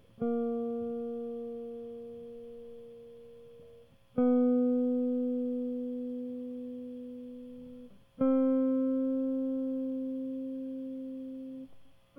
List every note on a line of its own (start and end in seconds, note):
0.22 3.49 A#3
4.18 7.88 B3
8.21 11.66 C4